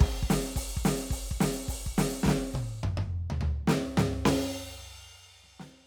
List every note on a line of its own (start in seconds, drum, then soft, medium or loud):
0.01 kick loud
0.01 crash loud
0.23 kick medium
0.30 open hi-hat loud
0.30 snare loud
0.56 open hi-hat loud
0.56 kick medium
0.77 kick medium
0.85 open hi-hat loud
0.85 snare loud
1.11 open hi-hat loud
1.11 kick medium
1.32 kick medium
1.41 open hi-hat loud
1.41 snare loud
1.69 open hi-hat loud
1.69 kick medium
1.87 kick medium
1.98 open hi-hat loud
1.98 snare loud
2.24 kick medium
2.24 snare loud
2.28 snare loud
2.54 kick medium
2.54 high tom loud
2.81 kick medium
2.81 hi-hat pedal soft
2.81 mid tom loud
2.98 mid tom loud
3.31 floor tom loud
3.41 floor tom loud
3.68 snare loud
3.70 snare loud
3.98 snare loud
3.98 floor tom loud
4.26 snare loud
4.26 crash loud
5.44 snare soft
5.60 snare soft
5.82 snare soft